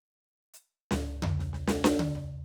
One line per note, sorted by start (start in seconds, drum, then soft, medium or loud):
0.54 hi-hat pedal medium
0.91 snare loud
0.91 floor tom loud
1.22 mid tom loud
1.22 high tom loud
1.39 snare soft
1.53 snare soft
1.68 snare loud
1.84 snare loud
1.99 high tom loud
2.15 mid tom medium